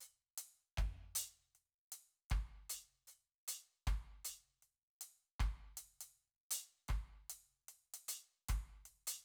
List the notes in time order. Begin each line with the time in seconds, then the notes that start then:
0.01 closed hi-hat, hi-hat pedal
0.38 closed hi-hat
0.78 kick, closed hi-hat, high tom
1.16 closed hi-hat
1.55 closed hi-hat
1.92 closed hi-hat
2.30 kick, cross-stick, closed hi-hat
2.70 closed hi-hat
3.08 closed hi-hat, hi-hat pedal
3.48 closed hi-hat
3.87 kick, cross-stick, closed hi-hat
4.25 closed hi-hat
4.63 closed hi-hat
5.01 closed hi-hat
5.40 kick, cross-stick, closed hi-hat
5.78 closed hi-hat
6.01 closed hi-hat
6.51 closed hi-hat
6.89 kick, cross-stick, closed hi-hat
7.30 closed hi-hat
7.69 closed hi-hat
7.94 closed hi-hat
8.09 closed hi-hat
8.49 kick, cross-stick, closed hi-hat
8.86 closed hi-hat
9.08 closed hi-hat